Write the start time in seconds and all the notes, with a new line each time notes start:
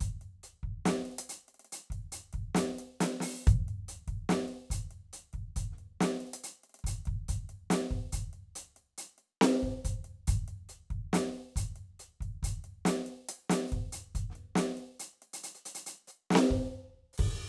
0.01 closed hi-hat, kick
0.22 closed hi-hat
0.44 closed hi-hat
0.63 kick, closed hi-hat
0.86 closed hi-hat, snare
1.06 closed hi-hat
1.12 closed hi-hat
1.19 closed hi-hat
1.30 closed hi-hat
1.49 closed hi-hat
1.55 closed hi-hat
1.60 closed hi-hat
1.65 closed hi-hat
1.73 closed hi-hat
1.91 kick, closed hi-hat
2.13 closed hi-hat
2.33 kick, closed hi-hat
2.55 closed hi-hat, snare
2.79 closed hi-hat
3.01 closed hi-hat, snare
3.21 open hi-hat, snare
3.47 kick, closed hi-hat, hi-hat pedal
3.69 closed hi-hat
3.89 closed hi-hat
4.08 kick, closed hi-hat
4.30 closed hi-hat, snare
4.49 closed hi-hat
4.71 closed hi-hat, kick
4.91 closed hi-hat
5.13 closed hi-hat
5.33 kick, closed hi-hat
5.57 closed hi-hat, kick
5.72 snare
5.79 closed hi-hat
6.01 closed hi-hat, snare
6.21 closed hi-hat
6.27 closed hi-hat
6.34 closed hi-hat
6.44 closed hi-hat
6.57 closed hi-hat
6.64 closed hi-hat
6.70 closed hi-hat
6.75 closed hi-hat
6.80 closed hi-hat
6.84 closed hi-hat, kick
7.06 kick, closed hi-hat
7.29 closed hi-hat, kick
7.50 closed hi-hat
7.71 closed hi-hat, snare
7.91 kick, closed hi-hat
8.13 closed hi-hat, kick
8.33 closed hi-hat
8.56 closed hi-hat
8.77 closed hi-hat
8.98 closed hi-hat
9.18 closed hi-hat
9.42 closed hi-hat, snare
9.63 kick, closed hi-hat
9.85 closed hi-hat, kick
10.05 closed hi-hat
10.28 closed hi-hat, kick
10.48 closed hi-hat
10.69 closed hi-hat
10.91 kick, closed hi-hat
11.14 closed hi-hat, snare
11.35 closed hi-hat
11.56 closed hi-hat, kick
11.76 closed hi-hat
12.00 closed hi-hat
12.21 kick, closed hi-hat
12.43 closed hi-hat, kick
12.65 closed hi-hat
12.86 closed hi-hat, snare
13.07 closed hi-hat
13.29 closed hi-hat
13.50 open hi-hat, snare
13.67 hi-hat pedal
13.72 kick, closed hi-hat
13.93 closed hi-hat, snare
14.15 closed hi-hat, kick
14.31 snare
14.36 closed hi-hat
14.56 closed hi-hat, snare
14.78 closed hi-hat
15.00 closed hi-hat
15.14 closed hi-hat
15.22 closed hi-hat
15.34 closed hi-hat
15.44 closed hi-hat
15.55 closed hi-hat
15.66 closed hi-hat
15.75 closed hi-hat
15.87 closed hi-hat
16.08 hi-hat pedal
16.31 snare
16.36 snare
16.51 kick
17.14 hi-hat pedal
17.18 kick, crash
17.34 closed hi-hat